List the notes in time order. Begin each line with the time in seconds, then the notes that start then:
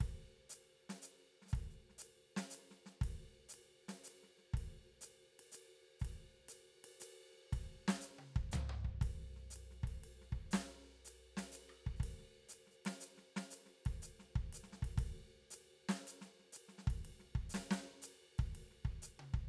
0.01 kick, ride
0.50 hi-hat pedal
0.54 ride
0.90 snare, ride
1.03 hi-hat pedal, ride
1.42 snare
1.46 snare, hi-hat pedal
1.50 kick, snare
1.56 ride
1.71 hi-hat pedal
1.90 snare
1.99 hi-hat pedal, ride
2.37 snare, ride
2.51 hi-hat pedal
2.55 ride
2.71 snare
2.86 snare
3.02 kick, ride
3.49 hi-hat pedal
3.55 ride
3.89 snare, ride
4.04 hi-hat pedal
4.09 ride
4.24 snare
4.39 snare
4.54 kick, ride
5.02 hi-hat pedal, ride
5.40 ride
5.52 hi-hat pedal, ride
6.00 kick, hi-hat pedal
6.05 ride
6.49 hi-hat pedal, ride
6.85 ride
7.01 hi-hat pedal, ride
7.34 snare
7.53 kick, ride
7.88 snare
8.01 hi-hat pedal
8.06 ride
8.19 high tom
8.36 kick
8.52 floor tom, hi-hat pedal
8.70 mid tom
8.85 kick
9.02 kick, ride
9.21 snare
9.36 snare
9.51 hi-hat pedal
9.56 ride
9.71 snare, hi-hat pedal
9.84 kick
9.88 ride
10.04 ride
10.22 snare
10.33 kick
10.52 snare, hi-hat pedal, ride
10.94 snare
11.05 hi-hat pedal, ride
11.38 snare, ride
11.53 hi-hat pedal, ride
11.70 cross-stick
11.87 kick
11.97 kick, hi-hat pedal
12.04 ride
12.20 snare
12.49 hi-hat pedal
12.54 ride
12.67 snare
12.72 hi-hat pedal
12.86 snare, ride
13.01 hi-hat pedal, ride
13.18 snare
13.37 snare
13.51 hi-hat pedal, ride
13.66 snare
13.86 kick, ride
14.03 hi-hat pedal, ride
14.20 snare
14.36 kick
14.53 hi-hat pedal, ride
14.64 snare
14.73 snare
14.83 kick, ride
14.98 kick, ride
15.40 snare
15.51 hi-hat pedal, ride
15.89 snare, ride
16.08 hi-hat pedal, ride
16.22 snare
16.40 snare
16.53 hi-hat pedal, ride
16.69 snare
16.79 snare
16.88 kick, ride
17.06 ride
17.20 snare
17.36 kick
17.50 hi-hat pedal
17.55 snare, ride
17.71 snare
18.03 hi-hat pedal, ride
18.22 snare
18.39 kick, ride
18.56 ride
18.71 snare
18.85 kick
19.03 hi-hat pedal, ride
19.20 high tom
19.34 kick